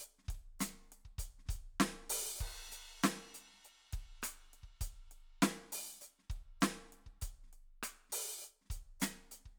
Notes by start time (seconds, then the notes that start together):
0.01 hi-hat pedal
0.19 snare
0.24 snare
0.29 kick, closed hi-hat
0.35 kick
0.60 closed hi-hat, snare, hi-hat pedal
0.93 closed hi-hat
1.05 kick
1.19 closed hi-hat, kick
1.39 snare
1.46 kick, snare
1.51 closed hi-hat
1.56 kick
1.80 snare, closed hi-hat
2.10 open hi-hat
2.39 kick, hi-hat pedal, crash
2.47 kick
2.69 closed hi-hat, snare
3.04 open hi-hat, snare, hi-hat pedal
3.16 snare
3.35 closed hi-hat
3.53 snare
3.65 open hi-hat, hi-hat pedal
3.93 kick, closed hi-hat
4.00 kick
4.23 closed hi-hat, cross-stick, hi-hat pedal
4.54 closed hi-hat
4.64 kick
4.81 closed hi-hat, kick
5.12 closed hi-hat
5.43 closed hi-hat, snare
5.73 open hi-hat
6.02 closed hi-hat, hi-hat pedal
6.19 snare
6.23 snare
6.27 kick, snare
6.32 closed hi-hat
6.36 kick
6.61 closed hi-hat, snare, hi-hat pedal
6.93 closed hi-hat
7.07 kick
7.22 closed hi-hat, kick
7.30 kick
7.44 snare
7.47 snare
7.53 closed hi-hat
7.83 closed hi-hat, cross-stick
8.10 open hi-hat, snare
8.42 closed hi-hat, hi-hat pedal
8.62 snare
8.65 snare
8.70 closed hi-hat, kick, snare
8.76 kick
9.01 closed hi-hat, snare, hi-hat pedal
9.32 closed hi-hat
9.46 kick